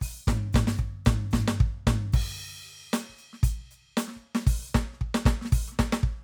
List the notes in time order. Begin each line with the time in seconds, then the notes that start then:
0.01 open hi-hat, kick, hi-hat pedal
0.27 kick, snare, floor tom, hi-hat pedal
0.53 kick, snare, floor tom, hi-hat pedal
0.67 snare
0.76 kick, hi-hat pedal
1.05 kick, snare, floor tom, hi-hat pedal
1.31 kick, snare, floor tom, hi-hat pedal
1.48 snare
1.60 kick
1.87 kick, snare, floor tom
2.10 kick, hi-hat pedal
2.14 kick, crash
2.62 hi-hat pedal
2.93 closed hi-hat, snare
3.10 kick
3.18 closed hi-hat
3.33 snare
3.43 open hi-hat, kick
3.71 hi-hat pedal
3.97 closed hi-hat, snare
4.08 snare
4.11 snare
4.14 kick, snare
4.35 snare
4.47 open hi-hat, kick
4.62 cross-stick
4.69 hi-hat pedal
4.75 kick, snare
4.93 snare
5.01 kick
5.15 snare
5.26 kick, snare
5.42 snare
5.45 snare
5.52 open hi-hat, kick
5.67 cross-stick, hi-hat pedal
5.72 snare
5.75 snare
5.79 kick, snare
5.93 snare
6.03 kick